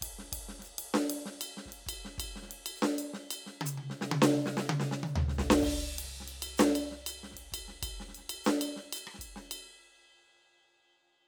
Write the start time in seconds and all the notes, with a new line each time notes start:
0.01 kick, hi-hat pedal, ride
0.18 snare
0.32 kick, ride
0.48 snare
0.59 snare, ride
0.64 hi-hat pedal
0.78 ride
0.94 snare
1.10 ride
1.25 snare
1.41 hi-hat pedal, ride bell
1.57 snare
1.65 kick, snare
1.72 ride
1.86 kick, hi-hat pedal, ride bell
2.05 snare
2.18 kick, ride bell
2.36 snare
2.42 snare
2.48 snare, ride
2.54 snare
2.66 ride bell
2.76 hi-hat pedal
2.82 snare
2.98 ride bell
3.13 snare
3.30 hi-hat pedal, ride bell
3.46 snare
3.61 high tom
3.66 hi-hat pedal
3.77 high tom
3.90 snare
4.01 snare
4.11 high tom
4.22 snare
4.33 high tom
4.46 snare
4.57 snare
4.69 high tom
4.80 snare
4.91 snare
5.03 hi-hat pedal, open hi-hat, high tom
5.16 floor tom
5.28 snare
5.33 hi-hat pedal
5.38 kick, snare
5.50 snare
5.58 hi-hat pedal
5.62 kick, crash
5.69 kick
5.83 cross-stick
5.89 cross-stick
5.94 snare
5.98 ride
6.20 snare
6.28 ride
6.42 ride bell
6.57 snare, hi-hat pedal
6.67 snare
6.75 ride bell
6.91 snare
7.06 hi-hat pedal, ride bell
7.23 snare
7.31 kick, snare
7.37 ride
7.52 kick, hi-hat pedal, ride bell
7.68 snare
7.82 kick, ride bell
8.00 snare
8.08 snare
8.15 snare, ride bell
8.29 ride bell
8.44 snare, hi-hat pedal
8.61 ride bell
8.76 snare
8.92 hi-hat pedal, ride bell
9.07 cross-stick
9.14 snare
9.19 kick, ride bell
9.36 snare
9.51 ride bell